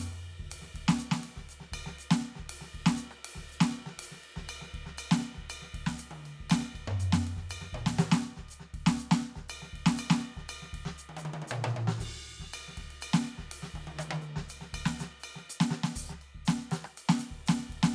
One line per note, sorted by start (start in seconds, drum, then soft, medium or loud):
0.01 hi-hat pedal medium
0.01 ride loud
0.41 kick soft
0.52 hi-hat pedal medium
0.52 ride loud
0.63 snare soft
0.76 kick soft
0.76 ride medium
0.82 kick soft
0.90 snare loud
1.00 hi-hat pedal medium
1.00 ride soft
1.13 snare loud
1.25 ride medium
1.38 kick soft
1.38 snare soft
1.51 hi-hat pedal medium
1.51 ride medium
1.62 snare soft
1.74 kick soft
1.74 ride bell loud
1.79 kick soft
1.88 snare medium
2.00 hi-hat pedal medium
2.00 ride medium
2.12 snare loud
2.37 snare soft
2.41 kick soft
2.51 hi-hat pedal medium
2.51 ride loud
2.62 snare soft
2.76 kick soft
2.76 ride soft
2.87 snare loud
2.98 hi-hat pedal medium
2.98 ride soft
3.12 cross-stick medium
3.26 ride loud
3.36 kick soft
3.36 snare soft
3.51 hi-hat pedal medium
3.51 ride soft
3.62 snare loud
3.76 ride soft
3.88 snare medium
3.99 kick soft
3.99 ride loud
4.03 hi-hat pedal medium
4.13 snare soft
4.25 ride soft
4.38 kick soft
4.38 snare medium
4.50 hi-hat pedal soft
4.50 ride bell loud
4.63 snare soft
4.75 kick soft
4.75 ride soft
4.81 kick soft
4.87 snare soft
4.99 hi-hat pedal medium
4.99 ride bell loud
5.13 snare loud
5.19 snare soft
5.25 ride soft
5.36 kick soft
5.36 snare soft
5.51 hi-hat pedal medium
5.51 ride bell loud
5.63 snare soft
5.76 kick medium
5.76 ride medium
5.81 kick soft
5.88 snare medium
5.99 hi-hat pedal medium
5.99 ride medium
6.12 closed hi-hat soft
6.12 high tom medium
6.27 ride bell medium
6.42 kick soft
6.51 snare loud
6.51 hi-hat pedal medium
6.51 ride bell loud
6.59 snare soft
6.76 kick soft
6.76 ride bell soft
6.89 floor tom loud
7.01 hi-hat pedal medium
7.01 ride bell medium
7.14 snare loud
7.28 ride medium
7.38 kick soft
7.38 snare soft
7.51 hi-hat pedal medium
7.51 ride bell loud
7.63 snare soft
7.74 kick soft
7.74 mid tom medium
7.80 kick soft
7.88 snare loud
8.00 snare loud
8.00 hi-hat pedal medium
8.13 snare loud
8.18 cross-stick medium
8.24 snare soft
8.38 kick soft
8.38 snare soft
8.50 hi-hat pedal medium
8.50 ride bell soft
8.61 snare soft
8.75 kick soft
8.75 ride medium
8.81 kick soft
8.88 snare loud
9.00 hi-hat pedal medium
9.00 ride soft
9.13 snare loud
9.37 kick soft
9.37 snare soft
9.50 hi-hat pedal medium
9.50 ride bell loud
9.63 snare soft
9.75 kick soft
9.75 ride soft
9.87 snare loud
9.99 hi-hat pedal medium
9.99 ride bell loud
10.12 snare loud
10.18 snare soft
10.38 kick soft
10.38 snare soft
10.50 hi-hat pedal medium
10.50 ride bell loud
10.63 snare soft
10.75 kick soft
10.75 ride medium
10.83 kick soft
10.83 snare medium
10.99 hi-hat pedal medium
11.11 high tom medium
11.18 hi-hat pedal medium
11.18 high tom medium
11.27 high tom loud
11.35 high tom loud
11.43 high tom medium
11.49 hi-hat pedal medium
11.49 mid tom loud
11.64 hi-hat pedal soft
11.64 mid tom loud
11.78 mid tom medium
11.89 snare medium
11.99 kick soft
11.99 snare soft
11.99 hi-hat pedal medium
11.99 crash medium
12.07 kick soft
12.41 kick soft
12.41 snare soft
12.54 hi-hat pedal medium
12.54 ride bell loud
12.69 snare soft
12.78 kick soft
12.78 snare soft
12.78 ride medium
12.84 kick soft
12.84 snare soft
12.92 ride medium
13.03 hi-hat pedal medium
13.03 ride bell loud
13.15 snare loud
13.22 snare soft
13.29 ride soft
13.39 kick soft
13.39 snare soft
13.53 hi-hat pedal medium
13.53 ride loud
13.64 snare medium
13.76 kick soft
13.76 high tom medium
13.89 high tom medium
14.00 hi-hat pedal medium
14.00 high tom medium
14.12 high tom loud
14.23 hi-hat pedal soft
14.23 high tom medium
14.37 kick soft
14.37 snare medium
14.48 kick soft
14.48 hi-hat pedal medium
14.48 ride bell medium
14.62 snare soft
14.75 kick medium
14.75 ride bell loud
14.81 kick soft
14.87 snare loud
15.01 snare medium
15.01 hi-hat pedal medium
15.21 hi-hat pedal soft
15.21 ride bell loud
15.37 snare soft
15.51 hi-hat pedal loud
15.51 ride bell medium
15.62 snare loud
15.72 snare medium
15.85 snare loud
15.97 kick soft
15.97 hi-hat pedal loud
15.97 ride bell soft
16.03 kick soft
16.11 snare soft
16.11 hi-hat pedal soft
16.23 ride bell soft
16.36 kick soft
16.47 snare loud
16.47 hi-hat pedal medium
16.47 ride bell medium
16.73 snare medium
16.73 hi-hat pedal medium
16.73 ride medium
16.86 cross-stick medium
16.98 hi-hat pedal medium
16.98 ride medium
17.10 snare loud
17.20 hi-hat pedal medium
17.20 ride medium
17.33 kick soft
17.48 snare loud
17.48 hi-hat pedal medium
17.48 ride loud
17.60 snare soft
17.71 kick soft
17.71 ride soft
17.77 kick soft
17.84 snare loud